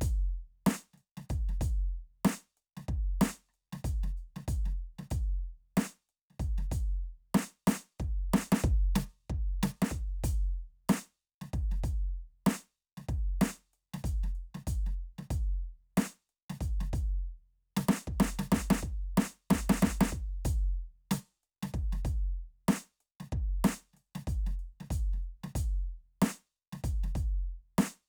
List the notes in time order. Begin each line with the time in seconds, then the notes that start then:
0.01 closed hi-hat, kick
0.66 closed hi-hat, snare
0.93 snare
0.98 closed hi-hat
1.17 snare
1.29 closed hi-hat, kick
1.49 snare
1.61 closed hi-hat, kick
2.25 closed hi-hat, snare
2.57 closed hi-hat
2.77 snare
2.88 kick, closed hi-hat
3.21 closed hi-hat, snare
3.49 cross-stick
3.54 closed hi-hat
3.72 snare
3.84 closed hi-hat, kick
4.03 snare
4.17 closed hi-hat
4.36 snare
4.48 closed hi-hat, kick
4.65 snare
4.71 snare
4.78 closed hi-hat
4.99 snare
5.11 closed hi-hat, kick
5.77 closed hi-hat, snare
6.09 closed hi-hat
6.30 snare
6.39 closed hi-hat, kick
6.58 snare
6.72 closed hi-hat, kick
7.34 snare
7.67 closed hi-hat, snare
7.99 kick, hi-hat pedal
8.34 snare
8.52 snare
8.64 kick
8.95 snare
9.30 kick
9.63 snare
9.82 snare
9.91 kick
10.24 closed hi-hat, kick
10.89 closed hi-hat, snare
11.41 snare
11.53 kick, closed hi-hat
11.71 snare
11.84 closed hi-hat, kick
12.46 closed hi-hat, snare
12.97 snare
13.09 kick, closed hi-hat
13.41 closed hi-hat, snare
13.73 closed hi-hat
13.94 snare
14.04 closed hi-hat, kick
14.23 snare
14.35 closed hi-hat
14.54 snare
14.67 closed hi-hat, kick
14.86 snare
15.18 snare
15.30 closed hi-hat, kick
15.97 closed hi-hat, snare
16.29 closed hi-hat
16.50 snare
16.61 closed hi-hat, kick
16.80 snare
16.93 closed hi-hat, kick
17.77 snare
17.86 snare, hi-hat pedal
18.07 kick
18.20 snare
18.39 snare
18.52 kick, snare
18.70 snare
18.83 kick
18.88 snare
19.17 snare
19.50 kick, snare
19.69 snare
19.82 kick, snare
20.01 snare
20.12 kick
20.45 closed hi-hat, kick
21.11 closed hi-hat, snare
21.43 closed hi-hat
21.63 snare
21.74 kick, closed hi-hat
21.92 snare
22.05 closed hi-hat, kick
22.68 closed hi-hat, snare
23.00 closed hi-hat
23.20 snare
23.32 kick, closed hi-hat
23.64 closed hi-hat, snare
23.93 snare, closed hi-hat
24.15 snare
24.27 closed hi-hat, kick
24.46 snare
24.59 closed hi-hat
24.80 snare
24.90 closed hi-hat, kick
25.13 snare
25.23 closed hi-hat
25.43 snare
25.55 closed hi-hat, kick
26.22 closed hi-hat, snare
26.72 snare
26.84 closed hi-hat, kick
27.03 snare
27.15 closed hi-hat, kick
27.78 closed hi-hat, snare